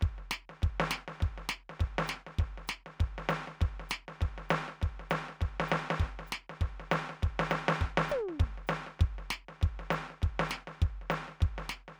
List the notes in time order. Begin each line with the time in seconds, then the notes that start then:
0.01 kick, snare
0.18 snare
0.31 snare, hi-hat pedal
0.49 snare
0.62 kick, snare
0.80 snare
0.90 snare, hi-hat pedal
1.08 snare
1.20 kick, snare
1.38 snare
1.49 snare, hi-hat pedal
1.69 snare
1.79 kick, snare
1.98 snare
2.07 snare, hi-hat pedal
2.26 snare
2.38 kick, snare
2.58 snare
2.67 kick, snare, hi-hat pedal
2.86 snare
3.00 kick, snare
3.18 snare
3.29 snare, hi-hat pedal
3.47 snare
3.61 kick, snare
3.79 snare
3.89 snare, hi-hat pedal
4.08 snare
4.21 kick, snare
4.38 snare
4.49 snare, hi-hat pedal
4.68 snare
4.82 kick, snare
4.99 snare
5.10 snare, hi-hat pedal
5.28 snare
5.41 kick, snare
5.60 snare
5.68 snare, hi-hat pedal
5.90 snare
6.00 kick, snare
6.19 snare
6.27 hi-hat pedal
6.32 snare
6.49 snare
6.61 kick, snare
6.80 snare
6.91 snare, hi-hat pedal
7.09 snare
7.22 kick, snare
7.39 snare
7.50 snare, hi-hat pedal
7.68 snare
7.81 kick, snare
7.97 snare
8.08 hi-hat pedal, high tom
8.29 snare
8.39 kick, snare
8.58 snare
8.67 snare, hi-hat pedal
8.87 snare
8.99 kick, snare
9.18 snare
9.30 snare, hi-hat pedal
9.48 snare
9.61 kick, snare
9.79 snare
9.90 snare, hi-hat pedal
9.95 kick
10.10 snare
10.22 kick, snare
10.39 snare
10.49 snare, hi-hat pedal
10.67 snare
10.82 kick, snare
11.01 snare
11.10 snare, hi-hat pedal
11.28 snare
11.40 kick, snare
11.58 snare
11.69 snare, hi-hat pedal
11.88 snare